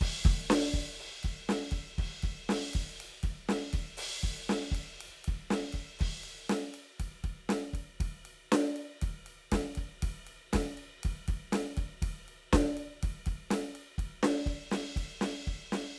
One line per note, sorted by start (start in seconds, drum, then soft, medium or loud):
0.01 kick medium
0.01 ride loud
0.24 kick loud
0.24 ride medium
0.50 snare loud
0.50 ride loud
0.73 kick medium
0.73 ride soft
0.99 ride medium
1.23 kick medium
1.23 ride medium
1.49 snare loud
1.49 ride medium
1.71 kick medium
1.71 ride medium
1.98 kick medium
1.98 ride medium
2.23 kick medium
2.23 ride medium
2.49 snare loud
2.49 hi-hat pedal soft
2.49 ride loud
2.74 kick medium
2.74 ride medium
3.00 ride medium
3.23 kick medium
3.23 ride medium
3.48 snare loud
3.48 hi-hat pedal soft
3.48 ride medium
3.73 kick medium
3.73 ride medium
3.97 open hi-hat medium
3.97 ride loud
4.20 kick medium
4.20 hi-hat pedal soft
4.20 ride medium
4.49 snare loud
4.49 ride medium
4.72 kick medium
4.72 hi-hat pedal soft
4.72 ride medium
5.01 ride loud
5.09 kick soft
5.24 kick medium
5.24 ride medium
5.51 snare loud
5.51 ride medium
5.73 kick medium
5.73 ride medium
5.99 kick medium
5.99 ride medium
6.24 ride medium
6.49 snare loud
6.49 ride loud
6.74 ride medium
7.00 kick medium
7.00 ride medium
7.24 kick medium
7.24 ride medium
7.49 snare loud
7.49 ride medium
7.73 kick medium
7.73 ride medium
8.00 kick medium
8.00 ride medium
8.25 ride medium
8.52 snare loud
8.52 ride loud
8.76 ride medium
9.02 kick medium
9.02 ride medium
9.26 ride medium
9.52 kick medium
9.52 snare loud
9.52 ride loud
9.75 kick medium
9.75 ride medium
10.02 kick medium
10.02 ride loud
10.27 ride medium
10.53 kick medium
10.53 snare loud
10.53 ride loud
10.77 ride medium
11.03 kick medium
11.03 ride loud
11.28 kick medium
11.28 ride medium
11.52 snare loud
11.52 ride loud
11.77 kick medium
11.77 ride medium
12.02 kick medium
12.02 ride loud
12.28 ride medium
12.53 kick loud
12.53 snare loud
12.53 ride loud
12.77 ride medium
13.03 kick medium
13.03 ride loud
13.26 kick medium
13.26 ride medium
13.51 snare loud
13.51 ride loud
13.75 ride medium
13.98 kick medium
13.98 ride medium
14.23 snare loud
14.23 ride medium
14.46 kick medium
14.46 ride medium
14.71 snare loud
14.71 ride medium
14.96 kick medium
14.96 ride medium
15.21 snare loud
15.21 ride medium
15.47 kick medium
15.47 ride soft
15.72 snare loud
15.72 ride medium